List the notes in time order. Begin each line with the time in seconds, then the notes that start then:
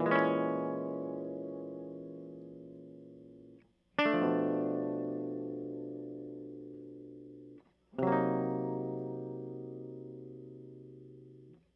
0.00 A#2 E3
0.07 G#3
0.12 C#4
0.17 E4
4.00 D4
4.07 A3
4.15 F3
4.24 B2
4.29 F2
8.00 C3 F#3
8.08 A#3
8.13 D#4